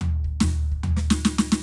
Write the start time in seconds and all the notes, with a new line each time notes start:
0.02 floor tom
0.25 kick
0.41 snare, floor tom
0.49 snare
0.72 kick
0.84 floor tom
0.97 snare
1.11 snare
1.25 snare
1.39 snare
1.53 snare